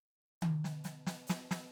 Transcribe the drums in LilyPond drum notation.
\new DrumStaff \drummode { \time 4/4 \tempo 4 = 140 r4 <hhp tommh>8 sn8 <hhp sn>8 sn8 <hhp sn>8 sn8 | }